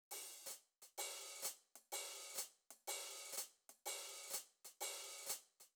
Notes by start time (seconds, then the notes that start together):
0.11 open hi-hat
0.46 closed hi-hat, hi-hat pedal
0.82 closed hi-hat
0.98 open hi-hat
1.42 closed hi-hat, hi-hat pedal
1.76 closed hi-hat
1.92 open hi-hat
2.35 closed hi-hat, hi-hat pedal
2.71 closed hi-hat
2.87 open hi-hat
3.32 hi-hat pedal
3.37 closed hi-hat
3.69 closed hi-hat
3.86 open hi-hat
4.30 closed hi-hat, hi-hat pedal
4.65 closed hi-hat
4.81 open hi-hat
5.26 closed hi-hat, hi-hat pedal
5.60 closed hi-hat